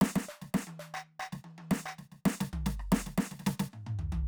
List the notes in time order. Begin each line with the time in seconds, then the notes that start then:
0.02 snare
0.16 snare
0.29 percussion
0.42 snare
0.54 snare
0.67 high tom
0.80 percussion
0.94 percussion
1.20 percussion
1.33 snare
1.45 high tom
1.58 high tom
1.71 snare
1.86 percussion
1.99 snare
2.12 snare
2.26 snare
2.41 snare
2.53 floor tom
2.66 snare
2.80 cross-stick
2.92 snare
3.07 snare
3.18 snare
3.31 snare
3.40 snare
3.47 snare
3.60 snare
3.74 mid tom
3.87 mid tom
3.99 floor tom
4.12 floor tom